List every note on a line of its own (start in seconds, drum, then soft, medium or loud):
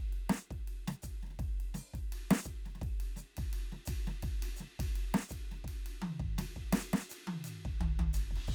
0.13 ride medium
0.30 snare medium
0.51 kick soft
0.51 ride soft
0.68 ride medium
0.88 snare medium
1.03 kick soft
1.03 hi-hat pedal medium
1.03 ride medium
1.23 snare soft
1.27 snare soft
1.31 snare soft
1.40 kick medium
1.40 ride medium
1.61 ride medium
1.75 snare soft
1.75 hi-hat pedal medium
1.94 kick soft
1.94 ride medium
2.13 ride medium
2.31 snare loud
2.44 kick soft
2.44 hi-hat pedal medium
2.44 ride medium
2.66 snare soft
2.76 snare soft
2.82 kick medium
2.82 ride medium
3.01 ride medium
3.17 snare soft
3.17 hi-hat pedal medium
3.38 kick soft
3.38 ride medium
3.54 ride medium
3.73 snare soft
3.86 kick soft
3.86 hi-hat pedal medium
3.86 ride loud
4.08 snare soft
4.23 kick soft
4.23 ride medium
4.43 ride loud
4.57 snare soft
4.57 hi-hat pedal medium
4.80 kick medium
4.80 ride loud
4.96 ride medium
5.15 snare medium
5.29 kick soft
5.29 hi-hat pedal medium
5.29 ride medium
5.52 snare soft
5.65 kick soft
5.65 ride medium
5.87 ride medium
6.03 high tom loud
6.20 kick soft
6.39 snare medium
6.39 ride loud
6.57 kick soft
6.73 snare loud
6.73 ride loud
6.94 snare medium
7.10 hi-hat pedal medium
7.10 ride medium
7.28 high tom loud
7.45 hi-hat pedal medium
7.45 ride medium
7.66 kick soft
7.81 floor tom loud
8.00 floor tom loud
8.14 hi-hat pedal medium
8.14 ride medium
8.31 kick soft
8.36 ride medium
8.48 kick soft
8.48 crash medium